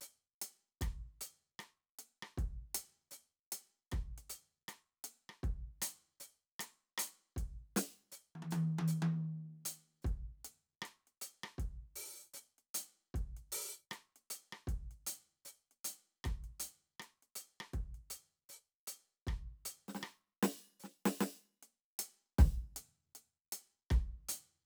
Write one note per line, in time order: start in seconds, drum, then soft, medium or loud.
0.01 closed hi-hat soft
0.01 hi-hat pedal medium
0.42 closed hi-hat medium
0.81 kick medium
0.81 cross-stick medium
0.81 closed hi-hat medium
1.21 closed hi-hat medium
1.59 cross-stick medium
1.59 closed hi-hat soft
1.99 closed hi-hat medium
2.22 cross-stick medium
2.37 kick medium
2.37 closed hi-hat soft
2.75 open hi-hat loud
3.11 closed hi-hat soft
3.11 hi-hat pedal medium
3.52 closed hi-hat loud
3.92 kick medium
3.92 cross-stick soft
3.92 closed hi-hat soft
4.18 closed hi-hat soft
4.30 closed hi-hat medium
4.68 cross-stick medium
4.68 closed hi-hat medium
5.04 closed hi-hat medium
5.29 cross-stick soft
5.43 kick medium
5.43 closed hi-hat soft
5.82 open hi-hat loud
5.82 cross-stick medium
6.20 closed hi-hat soft
6.20 hi-hat pedal medium
6.59 cross-stick medium
6.59 closed hi-hat medium
6.98 closed hi-hat loud
6.98 cross-stick medium
7.36 kick medium
7.36 closed hi-hat soft
7.76 open hi-hat loud
7.76 snare medium
8.12 hi-hat pedal medium
8.35 high tom soft
8.42 high tom medium
8.51 hi-hat pedal soft
8.51 high tom medium
8.79 high tom medium
8.88 hi-hat pedal medium
9.02 high tom medium
9.65 open hi-hat loud
10.02 kick medium
10.02 hi-hat pedal soft
10.07 closed hi-hat soft
10.45 closed hi-hat medium
10.82 cross-stick medium
10.82 closed hi-hat soft
11.07 closed hi-hat soft
11.21 closed hi-hat medium
11.43 cross-stick medium
11.58 kick medium
11.58 closed hi-hat soft
11.96 open hi-hat medium
12.34 closed hi-hat soft
12.34 hi-hat pedal medium
12.58 closed hi-hat soft
12.74 closed hi-hat loud
13.14 kick medium
13.14 closed hi-hat soft
13.37 closed hi-hat soft
13.52 open hi-hat loud
13.91 cross-stick medium
13.91 closed hi-hat soft
13.91 hi-hat pedal soft
14.16 closed hi-hat soft
14.30 closed hi-hat medium
14.52 cross-stick medium
14.67 kick medium
14.67 closed hi-hat soft
14.91 closed hi-hat soft
15.07 open hi-hat loud
15.45 closed hi-hat soft
15.45 hi-hat pedal medium
15.71 closed hi-hat soft
15.84 closed hi-hat loud
16.24 kick medium
16.24 cross-stick medium
16.24 closed hi-hat soft
16.44 closed hi-hat soft
16.60 closed hi-hat medium
17.00 cross-stick medium
17.00 closed hi-hat soft
17.22 closed hi-hat soft
17.35 closed hi-hat medium
17.60 cross-stick medium
17.73 kick medium
17.73 closed hi-hat soft
17.94 closed hi-hat soft
18.10 open hi-hat medium
18.49 hi-hat pedal soft
18.87 closed hi-hat medium
19.27 kick medium
19.27 cross-stick medium
19.27 closed hi-hat soft
19.65 closed hi-hat medium
19.88 snare soft
19.95 snare soft
20.00 cross-stick medium
20.00 snare soft
20.43 snare loud
20.43 hi-hat pedal soft
20.80 hi-hat pedal soft
20.84 snare soft
21.05 snare loud
21.18 snare medium
21.18 hi-hat pedal soft
21.63 closed hi-hat soft
21.99 closed hi-hat loud
22.38 kick loud
22.38 snare medium
22.38 closed hi-hat soft
22.76 closed hi-hat medium
23.15 closed hi-hat medium
23.52 closed hi-hat medium
23.90 kick medium
23.90 cross-stick medium
23.90 closed hi-hat soft
24.29 closed hi-hat loud